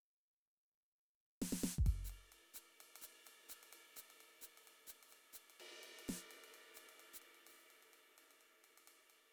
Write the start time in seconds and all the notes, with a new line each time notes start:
1.42 snare
1.52 snare
1.59 hi-hat pedal
1.63 snare
1.78 kick
1.86 kick, ride
2.04 hi-hat pedal
2.09 ride
2.32 ride
2.54 hi-hat pedal, ride
2.80 ride
2.96 ride
3.01 hi-hat pedal, ride
3.23 hi-hat pedal, ride
3.49 hi-hat pedal, ride
3.63 ride
3.70 hi-hat pedal, ride
3.96 hi-hat pedal, ride
4.10 ride
4.20 ride
4.41 hi-hat pedal, ride
4.57 ride
4.62 hi-hat pedal
4.67 ride
4.87 hi-hat pedal, ride
5.03 ride
5.08 hi-hat pedal
5.12 ride
5.33 hi-hat pedal, ride
5.50 ride
5.60 ride
5.83 ride
5.99 ride
6.08 snare, ride
6.31 ride
6.44 ride
6.54 ride
6.74 hi-hat pedal, ride
6.89 ride
7.00 ride
7.13 hi-hat pedal
7.22 ride
7.34 ride
7.46 hi-hat pedal, ride
7.70 ride
7.83 ride
7.93 ride
8.18 ride
8.31 ride
8.41 ride
8.64 ride
8.77 ride
8.87 ride
9.10 ride